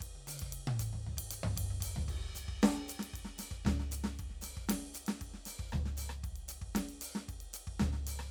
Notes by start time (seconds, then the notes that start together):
0.01 kick, ride
0.15 high tom
0.27 hi-hat pedal, high tom
0.40 kick, ride
0.53 ride
0.68 mid tom
0.80 kick, hi-hat pedal, ride
0.93 floor tom
1.07 floor tom
1.17 kick, ride
1.31 hi-hat pedal, ride
1.44 floor tom
1.57 kick, ride
1.71 mid tom
1.81 kick, hi-hat pedal, ride
1.96 floor tom
2.08 kick, ride
2.35 hi-hat pedal, ride
2.48 kick
2.62 snare, ride
2.76 snare
2.89 hi-hat pedal, ride
3.00 snare, ride
3.13 kick, hi-hat pedal, ride
3.25 snare
3.38 snare, hi-hat pedal, ride
3.51 kick
3.64 snare, floor tom, hi-hat pedal
3.80 snare
3.89 kick, hi-hat pedal, ride
4.04 snare
4.15 hi-hat pedal
4.19 kick, ride
4.30 snare
4.42 snare, hi-hat pedal, ride
4.57 kick
4.67 snare, hi-hat pedal, ride
4.95 hi-hat pedal, ride
5.07 snare, ride
5.21 kick, ride
5.34 snare
5.46 snare, hi-hat pedal, ride
5.59 kick
5.70 cross-stick, floor tom, hi-hat pedal
5.86 snare
5.97 hi-hat pedal, ride
6.10 cross-stick
6.24 kick, ride
6.36 ride
6.48 hi-hat pedal, ride
6.62 kick
6.73 snare, hi-hat pedal, ride
6.89 ride
7.01 hi-hat pedal, ride
7.15 snare
7.29 kick, ride
7.41 ride
7.54 hi-hat pedal, ride
7.67 kick
7.80 snare, floor tom
7.93 snare
8.07 hi-hat pedal, ride
8.19 cross-stick